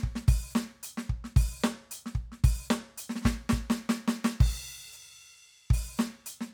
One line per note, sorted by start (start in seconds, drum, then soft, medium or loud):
0.03 kick medium
0.15 snare medium
0.28 open hi-hat loud
0.28 kick loud
0.50 hi-hat pedal medium
0.55 snare loud
0.83 closed hi-hat loud
0.97 snare medium
1.09 kick medium
1.24 snare medium
1.36 open hi-hat loud
1.36 kick loud
1.60 snare loud
1.60 hi-hat pedal medium
1.91 closed hi-hat loud
2.06 snare medium
2.15 kick medium
2.15 closed hi-hat soft
2.32 snare soft
2.44 open hi-hat loud
2.44 kick loud
2.65 hi-hat pedal medium
2.70 snare loud
2.98 closed hi-hat loud
3.09 snare medium
3.16 snare medium
3.22 kick medium
3.22 snare soft
3.25 snare loud
3.49 kick medium
3.49 snare loud
3.70 snare loud
3.89 snare loud
4.08 snare loud
4.24 snare loud
4.40 kick loud
4.40 crash loud
4.92 hi-hat pedal medium
5.70 open hi-hat loud
5.70 kick loud
5.97 snare loud
5.97 hi-hat pedal medium
6.26 closed hi-hat loud
6.41 snare medium